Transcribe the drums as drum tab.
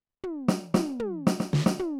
Snare     |----o-o---oooo--|
Mid tom   |--------o-------|
Floor tom |--o---o-------o-|